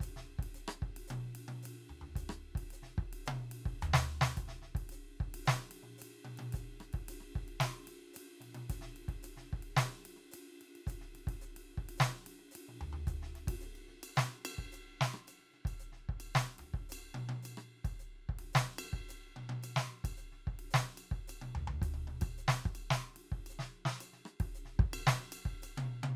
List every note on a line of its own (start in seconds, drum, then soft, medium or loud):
0.01 kick medium
0.01 hi-hat pedal medium
0.01 ride medium
0.17 snare soft
0.39 kick medium
0.39 ride medium
0.55 hi-hat pedal medium
0.55 ride soft
0.69 cross-stick medium
0.83 kick medium
0.97 ride medium
1.08 hi-hat pedal medium
1.08 high tom loud
1.36 ride medium
1.49 high tom medium
1.63 hi-hat pedal medium
1.63 ride medium
1.90 floor tom soft
2.02 floor tom medium
2.16 kick medium
2.16 hi-hat pedal medium
2.16 ride medium
2.30 cross-stick medium
2.56 kick medium
2.56 ride medium
2.71 hi-hat pedal medium
2.71 ride medium
2.83 snare soft
2.99 kick medium
3.14 ride medium
3.26 hi-hat pedal medium
3.26 high tom loud
3.52 ride medium
3.66 kick medium
3.82 floor tom loud
3.82 hi-hat pedal medium
3.94 snare loud
4.07 hi-hat pedal soft
4.22 snare loud
4.37 kick medium
4.37 hi-hat pedal medium
4.37 ride medium
4.49 snare soft
4.62 snare soft
4.76 kick medium
4.76 ride medium
4.90 hi-hat pedal medium
4.90 ride medium
5.21 kick medium
5.35 ride medium
5.46 snare loud
5.46 hi-hat pedal medium
5.72 ride medium
5.84 high tom soft
5.99 hi-hat pedal medium
5.99 ride medium
6.25 high tom medium
6.38 high tom medium
6.38 ride soft
6.53 kick medium
6.53 hi-hat pedal medium
6.53 ride medium
6.81 cross-stick soft
6.81 ride soft
6.94 kick medium
6.94 ride soft
7.09 hi-hat pedal medium
7.09 ride medium
7.21 cross-stick soft
7.36 kick medium
7.49 ride soft
7.61 snare loud
7.61 hi-hat pedal medium
7.61 ride medium
7.88 ride medium
8.14 hi-hat pedal medium
8.14 ride medium
8.41 high tom soft
8.41 ride soft
8.55 high tom medium
8.55 ride soft
8.70 kick medium
8.70 hi-hat pedal medium
8.70 ride medium
8.82 snare soft
8.97 ride soft
9.09 kick medium
9.09 ride soft
9.23 hi-hat pedal medium
9.23 ride medium
9.37 snare soft
9.48 hi-hat pedal soft
9.53 kick medium
9.63 ride soft
9.77 snare loud
9.77 hi-hat pedal medium
9.77 ride medium
10.06 ride medium
10.17 cross-stick soft
10.32 hi-hat pedal medium
10.32 ride medium
10.62 ride soft
10.76 ride soft
10.87 kick medium
10.87 hi-hat pedal medium
10.87 ride medium
11.01 snare soft
11.15 snare soft
11.15 ride soft
11.28 kick medium
11.28 ride medium
11.42 snare soft
11.42 hi-hat pedal medium
11.57 ride medium
11.74 snare soft
11.78 kick medium
11.90 ride medium
11.98 snare loud
11.98 hi-hat pedal medium
12.27 ride medium
12.39 cross-stick soft
12.52 hi-hat pedal medium
12.56 ride medium
12.69 high tom soft
12.77 hi-hat pedal soft
12.81 floor tom medium
12.93 floor tom medium
13.07 kick medium
13.07 hi-hat pedal medium
13.07 ride soft
13.23 snare soft
13.35 snare soft
13.35 ride soft
13.48 kick medium
13.48 ride medium
13.61 snare soft
13.61 hi-hat pedal medium
13.76 ride bell soft
13.88 snare soft
14.04 ride bell medium
14.16 snare loud
14.16 hi-hat pedal medium
14.46 ride bell loud
14.55 kick medium
14.55 snare soft
14.73 hi-hat pedal medium
14.73 ride bell soft
15.01 snare loud
15.14 cross-stick medium
15.28 hi-hat pedal medium
15.28 ride bell medium
15.40 snare soft
15.52 snare soft
15.52 hi-hat pedal soft
15.66 kick medium
15.66 ride bell medium
15.80 hi-hat pedal medium
15.93 snare soft
16.10 kick medium
16.21 ride bell medium
16.35 snare loud
16.35 hi-hat pedal medium
16.59 cross-stick soft
16.59 ride medium
16.59 floor tom soft
16.74 kick medium
16.90 hi-hat pedal medium
16.90 ride bell loud
17.15 high tom loud
17.30 high tom loud
17.43 hi-hat pedal medium
17.43 ride bell medium
17.58 cross-stick medium
17.85 kick medium
17.85 ride bell soft
18.00 hi-hat pedal medium
18.16 snare soft
18.30 kick medium
18.39 snare soft
18.39 ride medium
18.39 floor tom soft
18.54 snare loud
18.54 hi-hat pedal medium
18.79 ride bell loud
18.94 kick medium
19.09 hi-hat pedal medium
19.09 ride bell medium
19.37 high tom medium
19.50 high tom loud
19.63 hi-hat pedal medium
19.63 ride bell medium
19.77 snare medium
20.05 kick medium
20.05 ride bell medium
20.18 hi-hat pedal medium
20.32 snare soft
20.48 kick medium
20.60 ride medium
20.71 snare loud
20.71 hi-hat pedal medium
20.98 ride bell medium
21.12 kick medium
21.28 hi-hat pedal medium
21.28 ride bell medium
21.42 high tom medium
21.56 floor tom loud
21.68 floor tom loud
21.82 kick medium
21.82 hi-hat pedal medium
21.82 ride medium
21.95 high tom medium
22.08 high tom medium
22.22 kick medium
22.22 ride bell medium
22.38 hi-hat pedal medium
22.49 snare loud
22.66 kick medium
22.76 ride bell medium
22.91 snare loud
22.91 hi-hat pedal medium
23.17 ride medium
23.32 kick medium
23.47 hi-hat pedal medium
23.47 ride bell medium
23.60 snare medium
23.86 snare loud
24.01 hi-hat pedal medium
24.01 ride bell medium
24.14 snare soft
24.26 cross-stick medium
24.41 kick medium
24.41 ride medium
24.55 hi-hat pedal medium
24.66 snare soft
24.80 kick loud
24.94 ride bell loud
25.07 snare loud
25.07 hi-hat pedal medium
25.17 snare soft
25.33 ride bell loud
25.46 kick medium
25.63 hi-hat pedal medium
25.63 ride bell medium
25.78 high tom loud
26.04 high tom loud